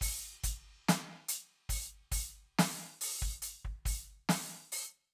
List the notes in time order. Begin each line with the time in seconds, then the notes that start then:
0.01 open hi-hat, kick
0.44 open hi-hat, kick
0.89 open hi-hat, snare
1.29 open hi-hat
1.69 open hi-hat, kick
2.12 open hi-hat, kick
2.59 open hi-hat, snare
3.01 open hi-hat
3.22 kick
3.42 open hi-hat
3.65 kick
3.85 open hi-hat, kick, ride
4.29 open hi-hat, snare
4.35 cross-stick
4.72 open hi-hat